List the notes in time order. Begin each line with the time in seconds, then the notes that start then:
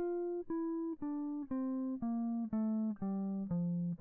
0.00 F4
0.51 E4
1.03 D4
1.52 C4
2.03 A#3
2.54 A3
3.03 G3
3.52 F3